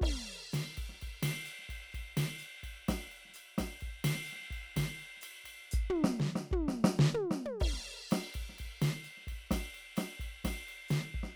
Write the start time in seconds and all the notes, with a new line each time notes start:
0.01 kick, hi-hat pedal, crash
0.08 kick
0.52 snare, hi-hat pedal, ride
0.77 kick, ride
0.89 snare
0.99 kick, hi-hat pedal, ride
1.07 kick
1.22 snare, ride
1.45 hi-hat pedal, ride
1.59 snare
1.69 kick, ride
1.91 kick, hi-hat pedal, ride
1.99 kick
2.17 snare, ride
2.38 hi-hat pedal, ride
2.63 kick, ride
2.88 kick, snare, ride
2.93 kick
3.07 snare
3.11 ride
3.25 snare
3.29 snare
3.33 hi-hat pedal, ride
3.58 kick, snare, ride
3.76 snare, hi-hat pedal, ride
3.82 kick
3.87 kick
4.04 snare, ride
4.15 snare
4.24 hi-hat pedal
4.28 snare, ride
4.36 snare
4.40 snare
4.42 snare
4.50 kick, ride
4.73 kick, snare, hi-hat pedal, ride
4.99 ride
5.17 snare
5.21 hi-hat pedal, ride
5.44 kick, ride
5.71 kick, hi-hat pedal
5.80 kick
5.89 floor tom
5.95 floor tom
6.04 snare
6.20 snare
6.35 snare
6.51 kick, floor tom
6.57 kick
6.68 snare
6.84 snare
6.99 snare
7.14 mid tom
7.31 snare
7.45 high tom
7.60 kick, hi-hat pedal, crash
7.72 kick, snare
8.09 snare, hi-hat pedal, ride
8.34 kick, ride
8.40 kick
8.49 snare
8.58 kick, hi-hat pedal, ride
8.65 kick
8.81 snare, ride
9.04 hi-hat pedal, ride
9.17 snare
9.27 kick, ride
9.32 kick
9.51 kick, snare, hi-hat pedal, ride
9.56 kick
9.74 ride
9.96 snare, hi-hat pedal, ride
10.19 kick, ride
10.25 kick
10.43 kick, snare, hi-hat pedal, ride
10.49 kick
10.68 ride
10.88 snare, hi-hat pedal, ride
11.00 snare
11.14 kick
11.19 kick, snare